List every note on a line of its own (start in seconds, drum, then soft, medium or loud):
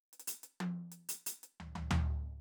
0.13 closed hi-hat medium
0.20 closed hi-hat medium
0.27 closed hi-hat loud
0.43 closed hi-hat medium
0.60 high tom loud
0.92 closed hi-hat medium
1.09 closed hi-hat loud
1.26 closed hi-hat loud
1.43 closed hi-hat medium
1.60 floor tom medium
1.75 floor tom medium
1.91 floor tom loud